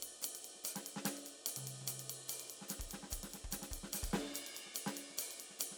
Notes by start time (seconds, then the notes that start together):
0.01 hi-hat pedal, ride
0.22 hi-hat pedal, ride
0.35 ride
0.42 hi-hat pedal, ride
0.55 snare
0.64 hi-hat pedal, ride
0.76 snare, ride
0.84 hi-hat pedal, ride
0.96 snare
1.05 snare, hi-hat pedal, ride
1.17 ride
1.26 hi-hat pedal, ride
1.47 hi-hat pedal, ride
1.57 high tom, ride
1.66 hi-hat pedal, ride
1.82 high tom
1.87 hi-hat pedal, high tom, ride
2.00 ride
2.07 hi-hat pedal, ride
2.29 hi-hat pedal, ride
2.40 ride
2.48 hi-hat pedal, ride
2.62 snare
2.69 snare, hi-hat pedal, ride
2.80 kick, ride
2.89 hi-hat pedal, ride
2.94 snare
3.03 snare
3.11 kick, hi-hat pedal, ride
3.23 snare, ride
3.30 hi-hat pedal
3.34 snare, ride
3.45 kick
3.52 snare, hi-hat pedal, ride
3.62 snare, ride
3.72 kick, hi-hat pedal, ride
3.84 snare
3.93 snare, hi-hat pedal, ride
4.03 kick, ride
4.13 snare, hi-hat pedal, ride
4.35 hi-hat pedal, ride
4.47 ride
4.55 hi-hat pedal, ride
4.66 snare
4.75 hi-hat pedal, ride
4.87 snare, ride
4.95 hi-hat pedal, ride
5.10 snare
5.18 hi-hat pedal, ride
5.31 ride
5.37 hi-hat pedal, ride
5.51 snare
5.60 hi-hat pedal, ride
5.72 snare